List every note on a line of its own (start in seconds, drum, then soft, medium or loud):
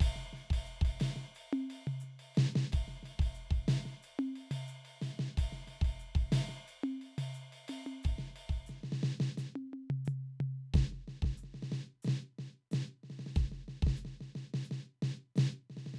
0.01 kick medium
0.01 hi-hat pedal medium
0.01 ride medium
0.16 snare soft
0.33 snare soft
0.38 ride soft
0.51 kick medium
0.51 ride medium
0.66 hi-hat pedal medium
0.82 kick medium
0.82 ride medium
1.01 snare medium
1.01 ride medium
1.17 snare soft
1.35 hi-hat pedal medium
1.35 ride soft
1.53 high tom loud
1.71 ride soft
1.88 floor tom medium
2.01 snare soft
2.01 hi-hat pedal medium
2.20 ride soft
2.35 snare loud
2.35 ride bell soft
2.56 snare medium
2.73 kick medium
2.73 hi-hat pedal medium
2.73 ride medium
2.88 snare soft
3.03 snare soft
3.03 ride soft
3.20 kick medium
3.20 ride soft
3.35 hi-hat pedal medium
3.51 kick medium
3.51 ride soft
3.69 snare loud
3.69 ride medium
3.86 snare soft
4.03 hi-hat pedal medium
4.03 ride soft
4.20 high tom loud
4.36 ride soft
4.52 floor tom medium
4.52 ride medium
4.68 hi-hat pedal medium
4.85 ride soft
5.02 snare medium
5.02 ride soft
5.20 snare medium
5.38 kick medium
5.38 hi-hat pedal medium
5.38 ride medium
5.53 snare soft
5.68 snare soft
5.68 ride soft
5.82 kick medium
5.82 ride soft
6.00 hi-hat pedal medium
6.16 kick medium
6.16 ride soft
6.33 snare loud
6.33 ride medium
6.49 snare soft
6.68 hi-hat pedal medium
6.68 ride soft
6.84 high tom loud
7.02 ride soft
7.19 floor tom medium
7.19 ride medium
7.35 hi-hat pedal medium
7.53 ride soft
7.69 high tom medium
7.69 ride medium
7.87 high tom medium
8.03 kick medium
8.03 hi-hat pedal medium
8.03 ride soft
8.19 snare soft
8.34 snare soft
8.34 ride soft
8.50 kick soft
8.50 ride bell soft
8.67 snare soft
8.67 hi-hat pedal medium
8.84 snare soft
8.93 snare medium
9.04 snare medium
9.21 snare medium
9.38 snare medium
9.38 hi-hat pedal medium
9.56 high tom medium
9.74 high tom medium
9.91 floor tom medium
10.06 floor tom loud
10.06 hi-hat pedal medium
10.41 floor tom medium
10.74 kick medium
10.74 snare medium
10.74 hi-hat pedal medium
10.93 snare soft
11.08 snare soft
11.23 kick medium
11.23 snare soft
11.38 hi-hat pedal medium
11.44 snare soft
11.55 snare soft
11.63 snare soft
11.73 snare medium
12.03 snare medium
12.03 hi-hat pedal medium
12.08 snare medium
12.39 snare soft
12.72 snare soft
12.72 hi-hat pedal medium
12.74 snare medium
13.04 snare soft
13.11 snare soft
13.20 snare soft
13.27 snare soft
13.36 kick medium
13.36 snare medium
13.36 hi-hat pedal medium
13.52 snare soft
13.69 snare soft
13.83 kick medium
13.83 snare soft
13.87 snare medium
13.97 hi-hat pedal medium
14.06 snare soft
14.21 snare soft
14.36 snare soft
14.54 snare medium
14.65 hi-hat pedal medium
14.72 snare medium
15.03 snare medium
15.36 snare soft
15.36 hi-hat pedal medium
15.38 snare loud
15.70 snare soft
15.78 snare soft
15.87 snare soft
15.95 snare soft